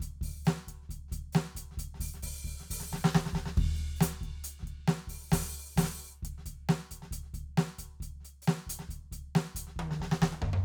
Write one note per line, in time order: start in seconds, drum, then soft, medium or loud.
0.01 closed hi-hat medium
0.01 kick medium
0.22 open hi-hat medium
0.22 kick medium
0.46 snare loud
0.46 hi-hat pedal medium
0.68 kick soft
0.68 closed hi-hat medium
0.83 snare soft
0.90 closed hi-hat medium
0.90 kick medium
1.09 closed hi-hat medium
1.09 kick medium
1.09 snare soft
1.33 snare loud
1.33 hi-hat pedal medium
1.56 closed hi-hat medium
1.56 kick soft
1.72 snare soft
1.78 closed hi-hat medium
1.78 kick medium
1.95 snare soft
2.01 open hi-hat medium
2.01 kick medium
2.15 snare soft
2.23 open hi-hat loud
2.23 kick medium
2.45 open hi-hat medium
2.45 kick medium
2.61 snare soft
2.71 open hi-hat loud
2.71 kick medium
2.81 snare soft
2.93 kick soft
2.93 snare medium
3.05 snare loud
3.16 kick soft
3.16 snare loud
3.26 snare medium
3.34 kick medium
3.34 snare medium
3.46 snare medium
3.58 kick loud
3.58 crash medium
3.76 open hi-hat soft
3.97 hi-hat pedal soft
4.01 closed hi-hat loud
4.01 snare loud
4.22 kick medium
4.22 closed hi-hat soft
4.45 closed hi-hat loud
4.60 kick medium
4.60 snare soft
4.68 closed hi-hat soft
4.89 snare loud
5.08 open hi-hat medium
5.08 kick soft
5.33 open hi-hat loud
5.33 kick medium
5.33 snare loud
5.77 open hi-hat loud
5.77 kick medium
5.77 snare loud
5.84 snare medium
5.98 open hi-hat soft
5.98 kick soft
6.10 hi-hat pedal soft
6.23 kick medium
6.23 closed hi-hat medium
6.39 snare soft
6.47 closed hi-hat medium
6.47 kick soft
6.70 snare loud
6.92 closed hi-hat medium
6.92 kick soft
7.03 snare soft
7.12 closed hi-hat medium
7.12 kick medium
7.24 snare soft
7.35 closed hi-hat soft
7.35 kick medium
7.58 snare loud
7.79 closed hi-hat medium
7.79 kick soft
8.01 closed hi-hat medium
8.01 kick medium
8.21 snare soft
8.25 closed hi-hat medium
8.43 hi-hat pedal medium
8.48 snare loud
8.68 closed hi-hat loud
8.68 kick soft
8.80 snare soft
8.90 closed hi-hat medium
8.90 kick soft
9.12 closed hi-hat medium
9.12 kick soft
9.36 snare loud
9.56 closed hi-hat loud
9.56 kick soft
9.68 snare soft
9.77 kick medium
9.77 high tom loud
9.92 snare medium
10.01 kick soft
10.01 snare medium
10.12 snare loud
10.23 kick medium
10.23 snare loud
10.33 high tom medium
10.43 kick medium
10.43 floor tom loud
10.54 floor tom loud